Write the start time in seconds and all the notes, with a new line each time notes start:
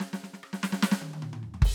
0.03 snare
0.13 snare
0.23 snare
0.33 snare
0.43 cross-stick
0.53 snare
0.63 snare
0.72 snare, hi-hat pedal
0.83 snare
0.92 snare
1.02 high tom
1.13 high tom
1.22 mid tom
1.33 mid tom
1.43 floor tom
1.54 floor tom
1.62 kick, crash